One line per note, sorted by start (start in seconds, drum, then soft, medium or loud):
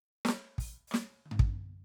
0.25 snare medium
0.29 snare medium
0.58 open hi-hat medium
0.58 kick medium
0.87 cross-stick medium
0.87 hi-hat pedal soft
0.94 snare loud
1.26 high tom soft
1.31 floor tom medium
1.39 kick loud